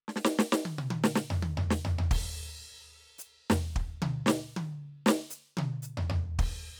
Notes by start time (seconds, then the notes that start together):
0.08 snare
0.16 snare
0.25 snare
0.39 snare
0.52 snare
0.65 high tom
0.78 mid tom
0.90 high tom
1.04 snare
1.16 snare
1.30 floor tom
1.43 high tom
1.57 floor tom
1.71 snare
1.85 floor tom
1.99 floor tom
2.11 kick, crash
3.18 hi-hat pedal
3.50 snare, floor tom
3.73 kick, hi-hat pedal
4.02 mid tom, high tom
4.26 snare
4.28 snare
4.56 high tom
5.06 snare
5.08 snare
5.30 hi-hat pedal
5.57 mid tom, high tom
5.82 hi-hat pedal
5.97 floor tom
6.10 floor tom
6.39 kick, crash
6.63 crash